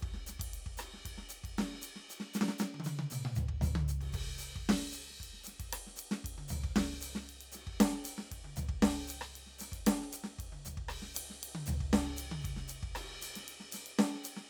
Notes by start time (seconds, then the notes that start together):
0.01 kick, ride
0.14 snare
0.27 snare, hi-hat pedal
0.40 kick, ride
0.54 ride
0.66 kick
0.78 cross-stick, hi-hat pedal, ride
0.94 snare
1.05 kick, ride
1.18 snare
1.29 hi-hat pedal, ride
1.44 kick, ride
1.58 snare, ride
1.74 snare
1.82 hi-hat pedal, ride
1.96 snare
2.10 hi-hat pedal, ride
2.20 snare
2.34 snare, hi-hat pedal
2.41 snare
2.49 snare
2.59 snare, hi-hat pedal
2.75 high tom
2.80 hi-hat pedal, high tom
2.87 high tom
2.99 high tom
3.11 hi-hat pedal, mid tom
3.25 mid tom
3.36 floor tom, hi-hat pedal
3.49 kick
3.62 floor tom, hi-hat pedal
3.76 high tom
3.88 hi-hat pedal
4.01 kick, ride
4.13 kick, hi-hat pedal, crash
4.38 hi-hat pedal
4.56 kick
4.69 snare, crash
4.92 hi-hat pedal
5.11 snare
5.17 kick, hi-hat pedal
5.23 ride
5.34 snare
5.44 snare, hi-hat pedal, ride
5.60 kick, ride
5.69 hi-hat pedal
5.73 cross-stick, ride
5.87 snare
5.97 hi-hat pedal, ride
6.12 snare
6.25 kick, ride
6.38 high tom
6.48 floor tom, hi-hat pedal
6.64 kick
6.73 kick, snare, crash
6.83 snare
6.93 snare
7.01 hi-hat pedal, ride
7.15 snare
7.21 snare
7.29 ride
7.41 ride
7.52 snare, hi-hat pedal, ride
7.67 kick
7.80 snare, ride
7.93 snare
8.05 hi-hat pedal, ride
8.18 snare
8.32 kick, ride
8.45 high tom
8.56 floor tom, hi-hat pedal
8.69 kick
8.83 snare, crash
9.00 snare
9.08 hi-hat pedal, ride
9.21 cross-stick
9.36 ride
9.47 snare
9.59 snare, hi-hat pedal, ride
9.72 kick, ride
9.87 snare, ride
10.01 snare
10.13 hi-hat pedal, ride
10.24 snare
10.39 kick, ride
10.52 high tom
10.65 floor tom, hi-hat pedal
10.77 kick
10.89 cross-stick, crash
11.02 snare
11.15 hi-hat pedal, ride
11.30 snare
11.43 ride
11.55 high tom
11.66 floor tom, hi-hat pedal
11.81 kick
11.93 snare, ride
12.04 snare
12.08 snare
12.17 hi-hat pedal, ride
12.32 high tom
12.42 kick, hi-hat pedal
12.46 ride
12.57 snare
12.68 hi-hat pedal, ride
12.83 kick
12.95 cross-stick, ride
13.22 hi-hat pedal, ride
13.36 snare, ride
13.48 ride
13.60 snare
13.72 snare, hi-hat pedal, ride
13.86 ride
13.99 snare, ride
14.15 snare
14.24 hi-hat pedal, ride
14.37 snare